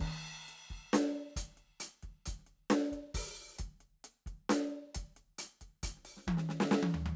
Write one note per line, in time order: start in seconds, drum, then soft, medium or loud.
0.01 kick medium
0.01 crash loud
0.49 closed hi-hat medium
0.71 kick soft
0.71 closed hi-hat soft
0.93 closed hi-hat loud
0.93 snare loud
1.15 closed hi-hat soft
1.37 closed hi-hat loud
1.37 kick soft
1.51 snare soft
1.57 closed hi-hat soft
1.80 closed hi-hat loud
2.03 kick soft
2.03 closed hi-hat soft
2.26 closed hi-hat loud
2.26 kick soft
2.38 snare soft
2.47 closed hi-hat soft
2.70 snare loud
2.70 closed hi-hat loud
2.92 kick soft
2.92 closed hi-hat soft
3.15 open hi-hat loud
3.15 kick soft
3.56 kick soft
3.56 closed hi-hat medium
3.56 hi-hat pedal medium
3.81 closed hi-hat soft
4.04 closed hi-hat medium
4.26 kick soft
4.26 closed hi-hat soft
4.50 closed hi-hat loud
4.50 snare loud
4.70 closed hi-hat soft
4.95 kick soft
4.95 closed hi-hat loud
5.17 closed hi-hat soft
5.39 closed hi-hat loud
5.61 kick soft
5.61 closed hi-hat medium
5.83 closed hi-hat loud
5.83 kick soft
5.96 snare soft
6.05 open hi-hat medium
6.17 snare soft
6.27 kick soft
6.27 high tom loud
6.37 snare medium
6.49 snare medium
6.60 snare loud
6.71 snare loud
6.83 closed hi-hat soft
6.83 high tom loud
6.94 floor tom medium
7.06 floor tom medium